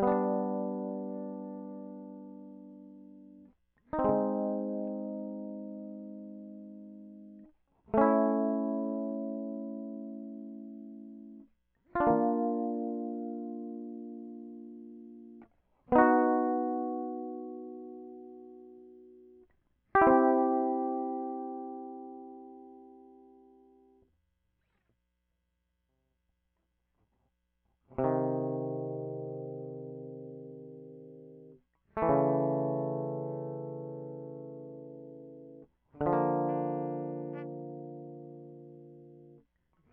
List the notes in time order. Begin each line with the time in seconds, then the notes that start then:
0.00 G3 B3
0.08 D4
3.94 D#4
3.99 C4
4.06 G#3
4.11 D3
7.95 A3 C#4
8.02 E4
11.96 F4
12.01 D4
12.08 E3 A#3
15.93 B3 D#4
15.99 F#4
19.96 G4
20.02 E4
20.08 C4
28.00 C3
28.05 D#3
31.98 A3
32.03 E3
32.11 C#3
35.96 D3
36.02 D3
36.07 F3
36.14 A#3